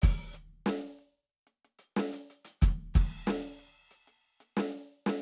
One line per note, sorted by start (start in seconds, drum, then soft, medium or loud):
0.02 open hi-hat loud
0.02 kick loud
0.33 hi-hat pedal loud
0.66 closed hi-hat loud
0.66 snare loud
0.99 closed hi-hat soft
1.30 closed hi-hat soft
1.47 closed hi-hat soft
1.65 closed hi-hat soft
1.79 closed hi-hat medium
1.96 snare loud
2.13 closed hi-hat medium
2.30 closed hi-hat medium
2.45 closed hi-hat loud
2.62 open hi-hat loud
2.62 kick loud
2.94 kick loud
2.94 hi-hat pedal loud
2.94 crash medium
3.26 closed hi-hat loud
3.26 snare loud
3.59 closed hi-hat soft
3.91 closed hi-hat medium
4.07 closed hi-hat medium
4.25 closed hi-hat soft
4.40 closed hi-hat medium
4.57 snare loud
4.71 closed hi-hat medium
5.06 snare loud